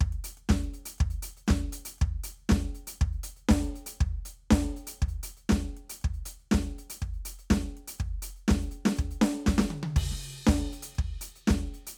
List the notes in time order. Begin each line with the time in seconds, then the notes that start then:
0.01 kick, closed hi-hat
0.13 closed hi-hat
0.24 closed hi-hat
0.38 closed hi-hat
0.49 kick, snare
0.64 closed hi-hat
0.74 closed hi-hat
0.86 closed hi-hat
0.99 kick, closed hi-hat
1.11 closed hi-hat
1.23 closed hi-hat
1.37 open hi-hat
1.47 kick, snare, hi-hat pedal
1.73 closed hi-hat
1.86 closed hi-hat
1.99 kick, closed hi-hat
2.24 closed hi-hat
2.39 closed hi-hat
2.50 kick, snare
2.65 closed hi-hat
2.75 closed hi-hat
2.88 closed hi-hat
3.01 kick, closed hi-hat
3.13 closed hi-hat
3.24 closed hi-hat
3.37 closed hi-hat
3.49 kick, snare
3.63 closed hi-hat
3.76 closed hi-hat
3.87 closed hi-hat
4.01 kick
4.26 closed hi-hat
4.38 closed hi-hat
4.51 kick, snare
4.77 closed hi-hat
4.87 closed hi-hat
4.99 kick, closed hi-hat
5.09 closed hi-hat
5.23 closed hi-hat
5.37 closed hi-hat
5.50 kick, snare
5.64 closed hi-hat
5.77 closed hi-hat
5.90 closed hi-hat
6.02 kick, closed hi-hat
6.14 closed hi-hat
6.26 closed hi-hat, kick
6.40 closed hi-hat
6.52 kick, snare
6.66 closed hi-hat
6.79 closed hi-hat
6.90 closed hi-hat
7.02 kick, closed hi-hat
7.14 closed hi-hat
7.21 kick
7.26 closed hi-hat
7.39 closed hi-hat
7.51 kick, snare
7.64 closed hi-hat
7.77 closed hi-hat
7.88 closed hi-hat
7.99 kick, closed hi-hat
8.23 closed hi-hat
8.36 closed hi-hat
8.48 kick, snare
8.62 closed hi-hat
8.71 closed hi-hat
8.86 snare
8.97 closed hi-hat, kick
9.11 closed hi-hat
9.22 snare
9.47 kick, snare
9.58 snare
9.71 high tom
9.83 high tom
9.96 kick, crash
10.12 snare
10.23 closed hi-hat
10.47 kick, snare
10.73 closed hi-hat
10.83 closed hi-hat
10.96 kick, closed hi-hat
11.21 closed hi-hat
11.36 closed hi-hat
11.48 kick, snare
11.61 closed hi-hat
11.74 closed hi-hat
11.87 closed hi-hat